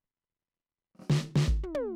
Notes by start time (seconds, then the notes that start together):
0.95 snare
0.99 snare
1.02 snare
1.10 snare
1.36 snare
1.48 kick
1.63 floor tom
1.74 high tom